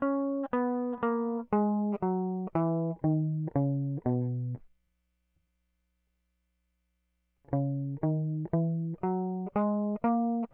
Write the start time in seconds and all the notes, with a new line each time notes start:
0.03 C#4
0.54 B3
1.03 A#3
1.54 G#3
2.04 F#3
2.56 E3
3.05 D#3
3.57 C#3
4.08 B2
7.54 C#3
8.04 D#3
8.54 E3
9.04 F#3
9.57 G#3
10.05 A#3